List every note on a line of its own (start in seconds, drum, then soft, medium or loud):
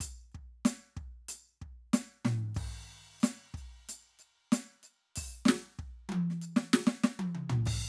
0.01 kick medium
0.01 percussion loud
0.32 kick soft
0.32 percussion soft
0.66 snare loud
0.66 percussion loud
0.97 kick medium
0.97 percussion soft
1.29 percussion loud
1.61 kick soft
1.61 percussion soft
1.94 snare loud
1.94 percussion loud
2.25 snare medium
2.25 floor tom loud
2.55 kick medium
2.55 crash medium
2.55 percussion soft
3.21 snare loud
3.21 percussion medium
3.24 percussion loud
3.55 kick medium
3.55 percussion soft
3.89 snare soft
3.89 percussion loud
4.20 percussion medium
4.53 snare loud
4.53 percussion loud
4.84 percussion medium
4.86 percussion soft
5.16 kick medium
5.16 percussion loud
5.46 snare loud
5.49 snare loud
5.79 kick medium
6.10 high tom loud
6.12 high tom loud
6.31 snare soft
6.42 percussion medium
6.57 snare loud
6.74 snare loud
6.87 snare loud
7.04 snare loud
7.04 percussion medium
7.20 high tom loud
7.35 mid tom medium
7.50 kick soft
7.50 floor tom loud
7.66 kick medium
7.66 crash loud